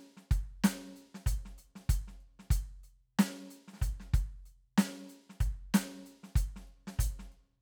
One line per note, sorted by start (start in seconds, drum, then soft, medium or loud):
0.01 closed hi-hat soft
0.18 snare soft
0.32 closed hi-hat medium
0.32 kick medium
0.65 closed hi-hat loud
0.65 snare loud
0.97 closed hi-hat soft
1.15 snare soft
1.27 closed hi-hat medium
1.27 kick medium
1.46 snare soft
1.59 closed hi-hat soft
1.76 snare soft
1.90 closed hi-hat medium
1.90 kick medium
2.09 snare soft
2.21 closed hi-hat soft
2.40 snare soft
2.51 closed hi-hat medium
2.51 kick medium
2.84 closed hi-hat soft
3.20 closed hi-hat medium
3.20 snare loud
3.51 closed hi-hat soft
3.69 snare soft
3.74 snare soft
3.77 snare soft
3.82 closed hi-hat medium
3.82 kick medium
4.01 snare soft
4.14 closed hi-hat soft
4.14 kick medium
4.46 closed hi-hat soft
4.79 closed hi-hat medium
4.79 snare loud
5.10 closed hi-hat soft
5.30 snare soft
5.41 closed hi-hat medium
5.41 kick medium
5.75 closed hi-hat loud
5.75 snare loud
6.07 closed hi-hat soft
6.24 snare soft
6.36 closed hi-hat medium
6.36 kick medium
6.57 snare soft
6.68 closed hi-hat soft
6.88 snare medium
7.00 closed hi-hat medium
7.00 kick medium
7.20 snare soft
7.32 snare soft
7.32 closed hi-hat soft